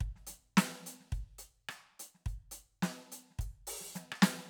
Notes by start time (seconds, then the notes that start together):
0.01 kick, closed hi-hat
0.16 snare
0.27 closed hi-hat, snare
0.58 closed hi-hat, snare
0.87 closed hi-hat
1.00 snare
1.13 closed hi-hat, kick
1.39 closed hi-hat
1.69 closed hi-hat, cross-stick
2.00 closed hi-hat
2.15 snare
2.26 closed hi-hat, kick
2.52 closed hi-hat
2.83 snare, closed hi-hat
3.12 closed hi-hat
3.31 snare
3.39 kick, closed hi-hat
3.67 open hi-hat
3.81 snare
3.86 snare
3.89 snare
3.95 snare, hi-hat pedal
4.12 cross-stick
4.23 snare
4.39 snare